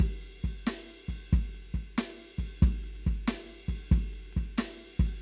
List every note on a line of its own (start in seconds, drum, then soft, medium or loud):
0.00 kick loud
0.00 ride loud
0.23 ride soft
0.44 kick medium
0.44 ride medium
0.67 snare loud
0.67 ride loud
0.90 ride soft
1.08 kick medium
1.08 ride medium
1.33 kick loud
1.33 ride medium
1.54 ride soft
1.74 kick medium
1.74 ride soft
1.98 snare loud
1.98 ride loud
2.38 kick medium
2.38 ride medium
2.62 kick loud
2.62 ride medium
2.83 ride soft
3.04 kick medium
3.04 ride soft
3.27 snare loud
3.27 ride loud
3.49 ride soft
3.68 kick medium
3.68 ride medium
3.91 kick loud
3.91 ride medium
4.13 ride soft
4.32 kick medium
4.32 ride medium
4.58 snare loud
4.58 ride loud
4.78 ride soft
4.99 kick loud
4.99 ride medium